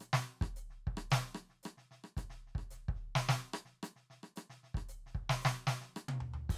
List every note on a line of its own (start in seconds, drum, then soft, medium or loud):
0.01 cross-stick soft
0.01 hi-hat pedal medium
0.14 snare loud
0.42 kick medium
0.42 cross-stick medium
0.57 hi-hat pedal medium
0.71 snare soft
0.88 kick medium
0.98 cross-stick medium
1.11 snare loud
1.11 hi-hat pedal medium
1.35 cross-stick medium
1.50 snare soft
1.64 cross-stick medium
1.64 hi-hat pedal medium
1.78 snare soft
1.92 snare soft
2.05 cross-stick soft
2.17 kick medium
2.17 cross-stick medium
2.17 hi-hat pedal medium
2.31 snare soft
2.47 snare soft
2.56 kick medium
2.56 cross-stick soft
2.71 snare soft
2.71 hi-hat pedal medium
2.89 kick medium
2.95 snare soft
3.16 snare medium
3.30 snare loud
3.30 hi-hat pedal medium
3.54 cross-stick medium
3.66 snare soft
3.84 cross-stick medium
3.84 hi-hat pedal medium
3.97 snare soft
4.11 snare soft
4.24 cross-stick soft
4.37 cross-stick medium
4.37 hi-hat pedal medium
4.50 snare soft
4.64 snare soft
4.75 kick medium
4.75 cross-stick medium
4.89 hi-hat pedal medium
5.07 snare soft
5.16 kick medium
5.30 snare medium
5.42 snare loud
5.42 hi-hat pedal medium
5.68 snare medium
5.82 snare soft
5.97 cross-stick medium
5.97 hi-hat pedal medium
6.09 high tom loud
6.21 floor tom medium
6.34 floor tom medium
6.50 kick medium
6.50 hi-hat pedal medium
6.50 crash medium